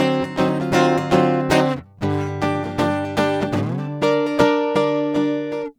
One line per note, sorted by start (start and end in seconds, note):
0.00 0.22 D3
0.00 0.24 F#3
0.00 0.25 C4
0.00 0.15 D4
0.23 0.41 D3
0.23 0.31 F#3
0.23 0.39 C4
0.39 0.73 D3
0.39 0.74 F#3
0.39 0.50 C4
0.39 0.50 D#4
0.50 0.62 C4
0.50 0.61 D#4
0.62 0.74 C4
0.62 0.75 F4
0.74 0.98 D#3
0.74 0.99 F#3
0.74 0.98 C4
0.74 1.00 F4
0.98 1.15 D3
0.98 1.12 F#3
0.98 1.13 C4
0.98 1.12 F4
1.13 1.50 D3
1.13 1.51 F#3
1.13 1.52 C4
1.13 1.44 F4
1.51 1.84 D3
1.51 1.70 F#3
1.51 1.85 C4
1.51 1.68 D#4
2.03 2.62 G2
2.03 2.45 D3
2.03 2.50 G3
2.03 2.17 D4
2.30 2.42 D4
2.43 2.62 D3
2.43 2.65 D4
2.43 2.64 G4
2.55 2.66 F3
2.64 2.79 F3
2.64 2.80 D4
2.64 2.81 G4
2.79 3.44 G2
2.79 2.86 D3
2.79 2.89 F3
2.79 3.01 D4
2.79 3.17 G4
2.92 2.97 G3
2.97 3.05 G3
3.01 3.18 D4
3.05 3.17 G3
3.18 3.51 D3
3.18 3.48 G3
3.18 3.42 D4
3.18 3.41 G4
3.42 3.71 G2
3.42 3.56 D4
3.42 3.59 G4
3.53 3.72 C#3
3.53 3.65 F#3
3.53 3.70 D#4
3.71 4.23 D3
3.71 3.87 G3
3.76 4.03 D5
4.03 4.23 G3
4.03 4.41 D4
4.03 4.27 A#4
4.03 4.27 D5
4.27 4.39 A#4
4.27 4.39 D5
4.40 4.51 D3
4.40 4.54 G3
4.40 4.76 D4
4.40 4.77 A#4
4.40 4.77 D5
4.76 5.17 D3
4.76 5.18 G3
4.76 5.17 D4
4.76 5.16 A#4
4.76 5.15 D5
5.15 5.68 D3
5.15 5.32 G3
5.15 5.77 D4
5.15 5.53 A#4
5.15 5.53 D5
5.54 5.79 A#4
5.54 5.72 D5